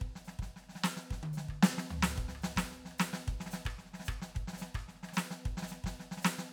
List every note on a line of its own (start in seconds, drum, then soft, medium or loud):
0.01 kick soft
0.01 snare soft
0.07 kick soft
0.15 snare soft
0.25 snare soft
0.25 hi-hat pedal soft
0.39 kick soft
0.39 snare soft
0.56 snare soft
0.62 snare soft
0.67 snare soft
0.69 snare soft
0.75 snare soft
0.83 snare loud
0.83 hi-hat pedal soft
0.96 snare soft
1.10 kick soft
1.10 snare soft
1.23 high tom loud
1.33 hi-hat pedal medium
1.37 snare soft
1.48 kick soft
1.48 cross-stick soft
1.62 snare loud
1.78 snare medium
1.89 floor tom medium
1.89 hi-hat pedal soft
2.02 snare loud
2.15 kick soft
2.15 snare soft
2.24 kick soft
2.28 snare soft
2.35 cross-stick soft
2.42 snare medium
2.42 hi-hat pedal soft
2.56 kick soft
2.56 snare medium
2.62 snare soft
2.71 snare soft
2.77 snare soft
2.85 snare soft
2.91 cross-stick soft
2.98 snare loud
2.98 hi-hat pedal medium
3.13 snare medium
3.27 kick soft
3.27 snare soft
3.34 kick soft
3.40 snare soft
3.46 snare soft
3.51 snare medium
3.51 hi-hat pedal medium
3.65 kick soft
3.65 cross-stick medium
3.78 snare soft
3.86 snare soft
3.92 snare soft
3.99 snare soft
4.05 kick soft
4.05 cross-stick medium
4.05 hi-hat pedal medium
4.14 kick soft
4.22 snare medium
4.35 kick soft
4.35 snare soft
4.42 kick soft
4.47 snare soft
4.53 snare soft
4.58 snare soft
4.58 hi-hat pedal medium
4.74 kick soft
4.74 cross-stick medium
4.80 kick soft
4.88 snare soft
4.95 snare soft
5.00 snare soft
5.03 snare soft
5.09 cross-stick soft
5.09 snare soft
5.13 snare medium
5.13 hi-hat pedal medium
5.31 snare soft
5.45 kick soft
5.45 snare soft
5.52 kick soft
5.57 snare medium
5.62 snare medium
5.67 snare soft
5.67 hi-hat pedal medium
5.84 kick soft
5.84 snare medium
6.00 snare soft
6.11 snare soft
6.17 snare soft
6.22 snare loud
6.22 hi-hat pedal medium
6.38 snare medium